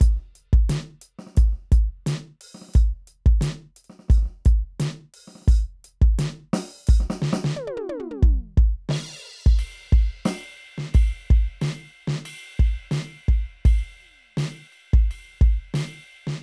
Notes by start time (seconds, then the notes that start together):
0.01 closed hi-hat, kick, snare
0.11 snare
0.16 snare
0.20 snare
0.35 closed hi-hat
0.53 kick
0.70 closed hi-hat, snare
1.02 closed hi-hat
1.19 snare
1.27 snare
1.35 closed hi-hat, kick, snare
1.42 snare
1.48 snare
1.53 snare
1.57 snare
1.62 snare
1.72 closed hi-hat, kick
2.07 closed hi-hat, snare
2.41 open hi-hat
2.55 snare
2.62 snare
2.69 snare
2.74 open hi-hat, kick, snare, hi-hat pedal
2.80 snare
2.85 snare
3.07 closed hi-hat
3.26 kick
3.41 closed hi-hat, snare
3.76 closed hi-hat
3.84 closed hi-hat
3.90 snare
3.99 snare
4.09 open hi-hat, kick, snare
4.14 snare, hi-hat pedal
4.22 snare
4.26 snare
4.29 snare
4.45 closed hi-hat, kick
4.80 open hi-hat, snare
5.14 open hi-hat
5.20 open hi-hat
5.28 snare
5.35 snare
5.42 snare
5.48 open hi-hat, kick, snare
5.52 snare
5.84 closed hi-hat
6.02 kick
6.19 closed hi-hat, snare
6.53 open hi-hat, snare
6.87 open hi-hat, kick
7.00 snare
7.10 snare
7.22 snare
7.33 snare, hi-hat pedal
7.44 snare
7.49 hi-hat pedal
7.56 high tom
7.67 high tom
7.77 mid tom
7.89 high tom
7.99 floor tom
8.11 mid tom
8.23 kick
8.58 kick
8.89 snare, crash
9.46 kick
9.59 ride
9.92 kick
10.25 snare, ride bell
10.61 ride
10.78 snare
10.94 kick, ride bell
11.30 kick
11.62 snare, ride bell
12.08 snare
12.15 snare
12.25 ride
12.60 kick
12.91 snare, ride bell
13.28 kick
13.65 kick, ride bell
14.00 floor tom, ride
14.37 snare, ride bell
14.72 ride bell
14.93 kick
15.11 ride bell
15.41 kick
15.74 snare, ride bell
16.12 ride
16.27 snare